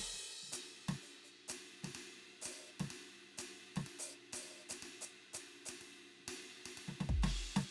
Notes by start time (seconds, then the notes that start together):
0.01 hi-hat pedal
0.14 snare
0.43 snare
0.49 snare, hi-hat pedal
0.54 ride
0.89 snare, ride
1.03 hi-hat pedal
1.25 hi-hat pedal
1.49 hi-hat pedal, ride
1.84 snare, ride
1.93 hi-hat pedal, ride
2.42 hi-hat pedal
2.46 ride
2.80 snare, ride
2.86 hi-hat pedal
2.91 ride
3.38 hi-hat pedal, ride
3.76 snare, ride
3.87 ride
3.99 hi-hat pedal
4.33 hi-hat pedal, ride
4.70 hi-hat pedal, ride
4.83 ride
5.01 hi-hat pedal
5.34 hi-hat pedal, ride
5.66 hi-hat pedal, ride
5.81 ride
6.19 snare
6.28 ride
6.66 ride
6.78 ride
6.88 snare
7.01 snare
7.09 kick
7.23 snare, ride
7.57 snare